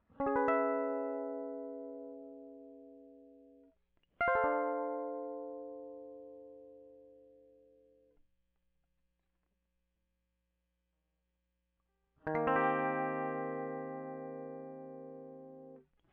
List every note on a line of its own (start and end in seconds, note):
0.20 3.73 C#4
0.27 3.69 G#4
0.36 3.67 B4
0.48 3.15 E5
4.21 6.18 F5
4.28 8.13 C5
4.36 8.19 A4
4.44 8.22 D4
12.28 15.88 D#3
12.35 15.84 A#3
12.48 15.82 C4
12.56 15.82 G4